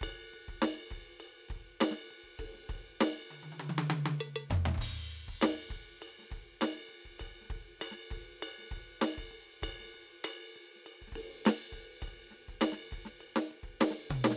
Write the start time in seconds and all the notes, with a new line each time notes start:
0.01 kick, hi-hat pedal, ride bell
0.12 kick
0.34 ride
0.48 kick
0.61 snare, hi-hat pedal, ride bell
0.91 kick, ride
1.20 hi-hat pedal, ride bell
1.49 kick, ride
1.57 kick
1.80 snare, hi-hat pedal, ride bell
1.91 snare
2.11 ride
2.23 kick
2.38 kick, hi-hat pedal, ride
2.45 kick
2.47 kick
2.53 snare
2.57 snare
2.69 kick, ride bell
2.77 kick
3.00 snare, hi-hat pedal, ride bell
3.31 hi-hat pedal, high tom
3.43 high tom
3.52 high tom
3.60 high tom
3.64 hi-hat pedal
3.69 high tom
3.78 high tom
3.90 hi-hat pedal, high tom
4.06 high tom
4.19 hi-hat pedal, percussion
4.36 percussion
4.48 kick, floor tom, hi-hat pedal
4.66 floor tom
4.74 kick, hi-hat pedal, floor tom
4.81 crash
4.90 kick
4.92 kick
5.28 kick
5.41 snare, hi-hat pedal, ride bell
5.68 kick, snare, ride
5.77 kick
6.00 hi-hat pedal, ride bell
6.19 snare
6.22 snare
6.31 kick, cross-stick, ride
6.37 kick
6.61 snare, hi-hat pedal, ride bell
6.89 ride
7.05 kick
7.18 kick, hi-hat pedal, ride bell
7.28 kick
7.31 kick
7.41 snare
7.45 snare
7.50 kick, ride
7.57 kick
7.79 cross-stick, hi-hat pedal, ride bell
7.91 snare
8.11 kick, ride
8.18 kick
8.21 kick
8.39 hi-hat pedal, ride bell
8.58 snare
8.62 snare
8.65 snare
8.71 kick, cross-stick, ride
8.78 kick
8.99 snare, hi-hat pedal, ride bell
9.18 kick
9.31 ride
9.61 kick, hi-hat pedal, ride bell
9.69 kick
9.80 snare
9.84 snare
9.94 ride
10.24 cross-stick, hi-hat pedal, ride bell
10.56 ride
10.76 snare
10.85 hi-hat pedal, ride bell
11.02 kick
11.07 snare
11.12 kick, ride
11.44 snare, hi-hat pedal, ride bell
11.72 kick, snare, ride
12.00 kick, hi-hat pedal, ride bell
12.08 kick
12.31 snare, ride
12.48 kick
12.60 snare, hi-hat pedal, ride bell
12.72 snare
12.91 kick, ride
12.98 kick
13.05 snare
13.21 hi-hat pedal, ride bell
13.36 snare
13.51 ride
13.63 kick
13.80 snare, hi-hat pedal, ride
13.91 snare
14.10 kick, mid tom
14.24 snare
14.30 snare